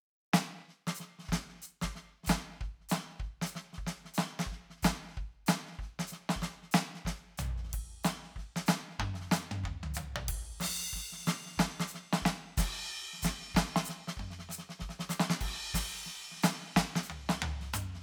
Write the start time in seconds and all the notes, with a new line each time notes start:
0.33 snare, hi-hat pedal
0.42 snare
0.53 snare
0.58 snare
0.65 snare
0.68 snare
0.87 snare
0.94 hi-hat pedal
1.00 snare
1.19 snare
1.22 snare
1.26 snare
1.28 kick, snare
1.32 snare
1.48 snare
1.52 snare
1.56 snare
1.62 snare, hi-hat pedal
1.81 kick, snare
1.95 snare
2.23 kick, snare, hi-hat pedal
2.28 snare
2.36 snare
2.48 snare
2.50 snare
2.54 snare
2.61 kick, snare
2.80 snare
2.89 snare, hi-hat pedal
2.97 snare
3.08 snare
3.13 snare
3.16 snare
3.19 kick, snare
3.21 snare
3.41 snare
3.46 hi-hat pedal
3.55 snare
3.73 snare
3.78 kick
3.87 snare
4.05 snare
4.14 hi-hat pedal
4.18 snare
4.27 snare
4.39 snare
4.46 kick
4.51 snare
4.70 snare
4.75 snare
4.79 snare
4.82 kick, snare, hi-hat pedal
4.84 snare
5.02 snare
5.07 snare
5.12 snare
5.17 kick, snare
5.46 snare, hi-hat pedal
5.66 snare
5.72 snare
5.77 kick, snare
5.81 snare
5.99 snare
6.07 hi-hat pedal
6.12 snare
6.29 snare
6.36 kick
6.42 snare
6.62 snare
6.71 snare, hi-hat pedal
6.94 snare
7.05 kick, snare
7.37 floor tom, hi-hat pedal
7.56 snare
7.63 snare
7.67 snare
7.72 kick, snare, ride
8.04 snare, hi-hat pedal
8.22 snare
8.27 snare
8.32 snare
8.36 kick
8.56 snare
8.66 snare, hi-hat pedal
8.90 snare
8.99 kick, high tom
9.14 snare
9.20 snare
9.26 snare
9.31 snare, hi-hat pedal
9.51 high tom
9.63 kick, mid tom
9.83 mid tom
9.94 hi-hat pedal, mid tom
10.16 floor tom
10.28 kick, ride
10.60 snare, hi-hat pedal, crash
10.63 snare
10.67 snare
10.74 snare
10.77 snare
10.81 snare
10.84 snare
10.93 kick, snare
11.12 snare
11.17 snare
11.20 snare
11.24 snare, hi-hat pedal
11.46 snare
11.50 snare
11.53 snare
11.56 kick, snare
11.59 snare
11.80 snare
11.87 hi-hat pedal
11.94 snare
12.13 snare
12.22 kick, snare
12.57 kick, snare, hi-hat pedal, ride
13.13 snare
13.17 snare
13.21 kick, snare, hi-hat pedal
13.24 snare
13.41 snare
13.46 snare
13.49 snare
13.54 kick, snare
13.76 snare
13.84 hi-hat pedal
13.89 snare
14.07 snare
14.17 kick, high tom
14.30 snare
14.39 snare
14.49 snare, hi-hat pedal
14.58 snare
14.69 snare
14.79 kick, snare
14.89 snare
15.09 snare, hi-hat pedal
15.19 snare
15.30 snare
15.41 kick, ride
15.74 kick, snare, hi-hat pedal, crash
16.06 snare
16.31 snare
16.36 snare
16.40 snare, hi-hat pedal
16.44 snare
16.61 snare
16.66 snare
16.69 snare
16.73 kick, snare
16.76 snare
16.95 snare
17.03 hi-hat pedal
17.10 mid tom
17.29 snare
17.42 mid tom
17.60 snare
17.63 snare
17.73 hi-hat pedal, high tom
17.94 snare
17.99 snare